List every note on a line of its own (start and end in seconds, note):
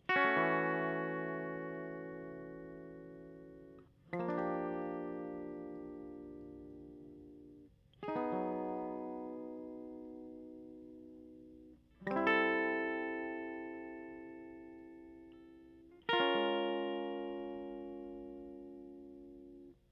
0.10 3.84 F#4
0.17 3.84 C#4
0.26 3.83 A3
0.38 3.84 E3
4.14 7.60 F3
4.20 7.70 A#3
4.29 7.70 D4
4.38 7.26 G4
8.03 9.73 G#4
8.09 11.78 D#4
8.16 11.78 B3
8.33 11.76 F#3
12.08 16.09 G3
12.08 16.06 C4
12.17 16.03 E4
12.27 14.77 A4
16.09 18.69 A#4
16.14 19.75 F4
16.21 19.75 C#4
16.36 19.69 G#3